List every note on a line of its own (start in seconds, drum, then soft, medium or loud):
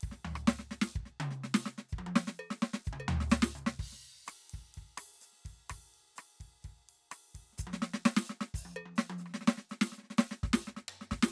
0.01 kick soft
0.01 hi-hat pedal soft
0.01 ride medium
0.10 kick soft
0.10 snare soft
0.25 floor tom medium
0.36 cross-stick medium
0.48 snare loud
0.59 snare soft
0.71 snare medium
0.82 snare medium
0.96 kick medium
1.03 kick soft
1.03 snare soft
1.20 mid tom loud
1.31 snare soft
1.44 snare medium
1.54 snare loud
1.66 snare medium
1.78 snare soft
1.89 kick soft
1.89 hi-hat pedal soft
1.99 kick soft
1.99 high tom medium
2.07 high tom medium
2.16 snare loud
2.27 snare medium
2.34 hi-hat pedal soft
2.39 percussion loud
2.51 snare medium
2.58 hi-hat pedal soft
2.62 snare medium
2.74 snare medium
2.85 kick medium
2.85 hi-hat pedal medium
2.93 kick soft
2.93 mid tom medium
3.00 percussion medium
3.07 kick soft
3.07 floor tom loud
3.21 snare medium
3.30 snare loud
3.30 hi-hat pedal medium
3.42 snare loud
3.55 hi-hat pedal medium
3.55 mid tom medium
3.67 snare medium
3.79 kick soft
3.79 crash medium
3.92 snare soft
4.26 cross-stick medium
4.26 hi-hat pedal medium
4.26 ride medium
4.50 kick soft
4.50 ride medium
4.56 kick soft
4.56 snare soft
4.61 snare soft
4.74 kick soft
4.74 hi-hat pedal soft
4.74 ride soft
4.83 kick soft
4.98 cross-stick medium
4.98 ride loud
5.21 hi-hat pedal medium
5.21 ride soft
5.33 snare soft
5.45 kick soft
5.45 ride soft
5.51 kick soft
5.70 kick soft
5.70 cross-stick medium
5.70 hi-hat pedal soft
5.70 ride medium
5.76 kick soft
5.94 ride soft
6.16 cross-stick medium
6.16 hi-hat pedal medium
6.16 ride medium
6.40 kick soft
6.40 ride soft
6.62 kick soft
6.62 hi-hat pedal soft
6.62 ride soft
6.70 kick soft
6.89 ride soft
7.11 cross-stick medium
7.11 hi-hat pedal medium
7.11 ride medium
7.35 kick soft
7.35 ride medium
7.53 snare soft
7.58 kick soft
7.58 hi-hat pedal loud
7.66 kick soft
7.66 high tom medium
7.73 snare medium
7.82 snare medium
7.94 snare medium
8.06 snare loud
8.17 snare loud
8.25 hi-hat pedal medium
8.30 snare medium
8.41 snare medium
8.54 kick soft
8.54 hi-hat pedal loud
8.65 high tom soft
8.74 hi-hat pedal soft
8.74 percussion loud
8.86 high tom soft
8.96 snare loud
8.96 hi-hat pedal medium
9.10 high tom medium
9.18 snare soft
9.18 hi-hat pedal medium
9.26 cross-stick soft
9.26 snare soft
9.34 snare medium
9.41 snare soft
9.47 snare loud
9.47 hi-hat pedal medium
9.69 snare soft
9.69 hi-hat pedal soft
9.81 snare loud
9.92 snare soft
9.92 hi-hat pedal medium
9.98 snare soft
10.04 snare soft
10.10 snare soft
10.18 snare loud
10.18 hi-hat pedal medium
10.31 snare medium
10.43 kick medium
10.43 snare soft
10.43 hi-hat pedal soft
10.53 kick soft
10.53 snare loud
10.67 snare soft
10.77 snare soft
10.88 hi-hat pedal soft
10.88 floor tom loud
11.01 snare soft
11.08 kick soft
11.08 hi-hat pedal soft
11.18 kick soft
11.23 snare loud